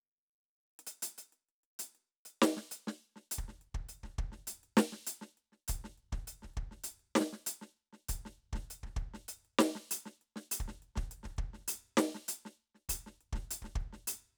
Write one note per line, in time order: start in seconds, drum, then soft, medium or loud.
0.79 closed hi-hat soft
0.87 closed hi-hat medium
1.02 closed hi-hat loud
1.18 closed hi-hat medium
1.32 closed hi-hat soft
1.49 closed hi-hat soft
1.63 closed hi-hat soft
1.79 closed hi-hat medium
1.95 closed hi-hat soft
2.25 closed hi-hat soft
2.42 snare loud
2.57 snare soft
2.71 closed hi-hat medium
2.87 snare medium
3.04 closed hi-hat soft
3.16 snare soft
3.31 closed hi-hat loud
3.38 kick medium
3.48 snare soft
3.61 closed hi-hat soft
3.74 kick medium
3.89 closed hi-hat medium
4.03 kick soft
4.03 snare soft
4.18 kick medium
4.18 closed hi-hat soft
4.32 snare soft
4.47 closed hi-hat medium
4.47 snare soft
4.63 closed hi-hat soft
4.77 snare loud
4.92 snare soft
5.07 closed hi-hat loud
5.21 snare soft
5.37 closed hi-hat soft
5.52 snare soft
5.68 closed hi-hat loud
5.68 kick medium
5.84 snare soft
5.98 closed hi-hat soft
6.12 kick medium
6.12 snare soft
6.27 closed hi-hat medium
6.42 kick soft
6.42 snare soft
6.54 kick medium
6.54 closed hi-hat soft
6.71 snare soft
6.84 closed hi-hat medium
6.99 closed hi-hat soft
7.15 snare loud
7.20 snare medium
7.33 snare soft
7.46 closed hi-hat loud
7.61 snare soft
7.77 closed hi-hat soft
7.93 snare soft
8.09 closed hi-hat medium
8.09 kick medium
8.25 snare soft
8.38 closed hi-hat soft
8.53 kick medium
8.53 snare soft
8.62 kick soft
8.70 closed hi-hat medium
8.83 kick soft
8.83 snare soft
8.96 kick medium
8.96 closed hi-hat soft
9.14 snare soft
9.28 closed hi-hat medium
9.45 closed hi-hat soft
9.59 snare loud
9.75 snare soft
9.91 closed hi-hat loud
10.05 snare soft
10.21 closed hi-hat soft
10.36 snare soft
10.51 closed hi-hat loud
10.60 kick medium
10.68 snare soft
10.82 closed hi-hat soft
10.96 kick medium
10.96 snare soft
11.11 closed hi-hat medium
11.23 kick soft
11.23 snare soft
11.37 kick medium
11.37 closed hi-hat soft
11.53 snare soft
11.60 snare soft
11.68 closed hi-hat loud
11.97 snare loud
12.14 snare soft
12.28 closed hi-hat loud
12.45 snare soft
12.60 closed hi-hat soft
12.75 snare soft
12.89 closed hi-hat loud
12.89 kick soft
13.06 snare soft
13.21 closed hi-hat soft
13.33 kick medium
13.33 snare soft
13.51 closed hi-hat loud
13.62 kick soft
13.62 snare soft
13.75 kick medium
13.80 closed hi-hat soft
13.93 snare soft
14.07 closed hi-hat loud